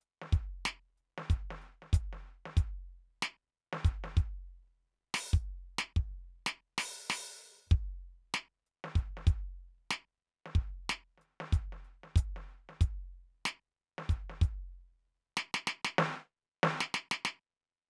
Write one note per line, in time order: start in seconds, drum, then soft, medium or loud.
0.01 closed hi-hat soft
0.22 snare soft
0.33 closed hi-hat soft
0.33 kick medium
0.65 closed hi-hat loud
0.65 snare loud
0.97 closed hi-hat soft
1.18 snare medium
1.30 closed hi-hat medium
1.30 kick medium
1.51 snare soft
1.62 closed hi-hat soft
1.82 snare soft
1.93 closed hi-hat loud
1.93 kick medium
2.13 snare soft
2.46 snare soft
2.57 closed hi-hat medium
2.57 kick medium
3.22 closed hi-hat medium
3.22 snare loud
3.73 snare medium
3.85 closed hi-hat medium
3.85 kick medium
4.04 snare soft
4.17 closed hi-hat soft
4.17 kick medium
5.14 open hi-hat loud
5.14 snare loud
5.31 kick medium
5.31 hi-hat pedal soft
5.78 closed hi-hat loud
5.78 snare loud
5.96 kick medium
6.46 open hi-hat loud
6.46 snare loud
6.78 open hi-hat loud
6.78 snare loud
7.10 open hi-hat loud
7.10 snare loud
7.67 kick soft
7.67 hi-hat pedal soft
7.71 kick medium
8.34 closed hi-hat loud
8.34 snare loud
8.66 closed hi-hat soft
8.84 snare soft
8.95 closed hi-hat soft
8.95 kick medium
8.95 snare soft
9.17 snare soft
9.27 closed hi-hat medium
9.27 kick medium
9.91 closed hi-hat loud
9.91 snare loud
10.46 snare soft
10.55 kick medium
10.89 closed hi-hat loud
10.89 snare loud
11.18 closed hi-hat soft
11.18 snare soft
11.40 snare soft
11.53 closed hi-hat medium
11.53 kick medium
11.72 snare soft
11.84 closed hi-hat soft
12.03 snare soft
12.16 closed hi-hat loud
12.16 kick medium
12.36 snare soft
12.45 snare soft
12.45 closed hi-hat soft
12.69 snare soft
12.81 closed hi-hat medium
12.81 kick medium
13.45 closed hi-hat loud
13.45 snare loud
13.98 snare soft
14.09 closed hi-hat medium
14.09 kick medium
14.30 snare soft
14.41 closed hi-hat medium
14.41 kick medium
15.37 snare loud
15.54 snare loud
15.67 snare loud
15.85 snare loud
15.98 snare loud
16.63 snare loud
16.81 snare loud
16.94 snare loud
17.11 snare loud
17.25 snare loud